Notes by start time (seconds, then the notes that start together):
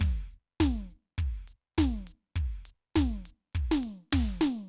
0.01 kick
0.31 closed hi-hat
0.60 kick, snare, closed hi-hat
0.90 closed hi-hat
1.18 kick, closed hi-hat
1.48 closed hi-hat
1.75 kick, snare, hi-hat pedal
2.07 closed hi-hat
2.36 kick, closed hi-hat
2.66 closed hi-hat
2.95 kick, snare, hi-hat pedal
3.26 closed hi-hat
3.53 kick, hi-hat pedal
3.72 snare
3.83 open hi-hat
4.11 kick, snare, hi-hat pedal
4.41 open hi-hat, snare